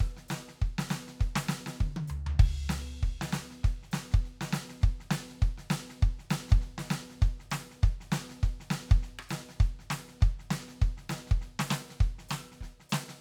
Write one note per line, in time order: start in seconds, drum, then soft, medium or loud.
0.01 kick medium
0.01 snare soft
0.17 snare soft
0.29 snare loud
0.29 hi-hat pedal medium
0.34 kick soft
0.49 snare soft
0.62 kick medium
0.62 snare soft
0.79 snare loud
0.90 snare loud
0.90 hi-hat pedal medium
1.08 snare soft
1.20 kick medium
1.20 snare soft
1.36 snare loud
1.48 snare loud
1.48 hi-hat pedal medium
1.67 snare medium
1.81 kick medium
1.81 high tom medium
1.97 high tom loud
2.08 floor tom loud
2.08 hi-hat pedal medium
2.27 floor tom loud
2.40 kick loud
2.40 ride medium
2.60 kick soft
2.70 snare loud
2.70 hi-hat pedal medium
2.74 kick soft
3.03 kick medium
3.03 snare soft
3.22 snare loud
3.33 kick soft
3.33 snare loud
3.33 hi-hat pedal medium
3.51 snare soft
3.64 kick medium
3.64 snare soft
3.83 snare soft
3.92 snare loud
3.92 hi-hat pedal medium
4.12 kick loud
4.12 snare soft
4.25 snare soft
4.42 snare loud
4.52 kick soft
4.52 snare loud
4.52 hi-hat pedal medium
4.70 snare soft
4.82 kick loud
4.82 snare soft
5.01 snare soft
5.11 snare loud
5.11 hi-hat pedal medium
5.30 snare soft
5.42 kick loud
5.42 snare soft
5.58 snare soft
5.71 snare loud
5.71 hi-hat pedal medium
5.90 snare soft
6.02 kick loud
6.02 snare soft
6.19 snare soft
6.25 kick soft
6.31 snare loud
6.31 hi-hat pedal medium
6.46 kick soft
6.46 snare soft
6.53 kick loud
6.62 snare soft
6.79 snare medium
6.91 snare loud
6.91 hi-hat pedal medium
7.10 snare soft
7.22 kick loud
7.22 snare soft
7.40 kick soft
7.40 snare soft
7.51 snare loud
7.51 hi-hat pedal medium
7.71 snare soft
7.83 kick loud
7.83 snare soft
8.01 kick soft
8.01 snare soft
8.12 snare loud
8.12 hi-hat pedal medium
8.30 snare soft
8.43 kick medium
8.43 snare soft
8.61 kick soft
8.61 snare soft
8.71 snare loud
8.71 hi-hat pedal medium
8.89 kick loud
8.89 snare soft
9.03 snare soft
9.20 cross-stick medium
9.30 snare loud
9.30 hi-hat pedal medium
9.50 snare soft
9.61 kick loud
9.61 snare soft
9.80 snare soft
9.91 snare loud
9.91 hi-hat pedal medium
10.09 snare soft
10.21 kick loud
10.21 snare soft
10.40 kick soft
10.40 snare soft
10.51 snare loud
10.51 hi-hat pedal medium
10.69 snare soft
10.82 kick loud
10.82 snare soft
10.98 snare soft
11.10 snare loud
11.10 hi-hat pedal medium
11.27 snare soft
11.32 kick loud
11.42 snare soft
11.60 snare loud
11.69 snare loud
11.69 hi-hat pedal medium
11.90 snare soft
12.01 kick loud
12.01 snare soft
12.19 snare soft
12.29 snare loud
12.29 hi-hat pedal medium
12.52 snare soft
12.61 kick soft
12.61 snare soft
12.81 snare soft
12.90 snare loud
12.90 hi-hat pedal medium
13.09 snare medium